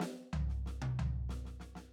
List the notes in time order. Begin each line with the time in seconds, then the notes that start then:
0.00 snare
0.20 snare
0.33 floor tom
0.49 snare
0.66 snare
0.82 high tom
0.99 floor tom
1.29 snare
1.45 snare
1.60 snare
1.75 snare